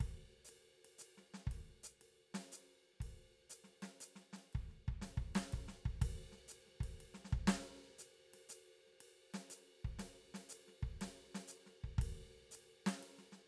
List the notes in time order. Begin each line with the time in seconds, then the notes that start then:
0.01 kick, ride
0.45 hi-hat pedal
0.50 ride
0.85 ride
0.99 hi-hat pedal, ride
1.18 snare
1.35 snare
1.48 kick
1.52 ride
1.84 hi-hat pedal
2.02 ride
2.35 snare, ride
2.53 hi-hat pedal, ride
2.93 snare
2.97 snare
3.01 kick, ride
3.50 hi-hat pedal, ride
3.65 snare
3.83 snare, ride
4.01 hi-hat pedal, ride
4.16 snare
4.34 snare, ride
4.54 kick, ride
4.70 snare
4.89 kick
5.02 snare, ride
5.18 kick
5.36 snare, ride
5.53 kick, ride
5.69 snare
5.86 kick
6.02 kick, ride
6.17 snare
6.33 snare
6.49 hi-hat pedal, ride
6.67 snare
6.81 kick, ride
7.01 ride
7.15 snare
7.25 snare
7.33 kick
7.48 snare, ride
7.99 hi-hat pedal, ride
8.34 snare, ride
8.50 hi-hat pedal, ride
8.87 snare
8.91 snare
8.93 snare
9.01 ride
9.35 snare, ride
9.51 hi-hat pedal, ride
9.85 kick
10.00 snare, ride
10.35 snare, ride
10.50 hi-hat pedal, ride
10.68 snare
10.83 kick
11.02 snare, ride
11.35 snare, ride
11.48 hi-hat pedal
11.54 ride
11.67 snare
11.84 kick
11.99 kick, ride
12.52 hi-hat pedal, ride
12.87 snare, ride
13.04 ride
13.19 snare
13.33 snare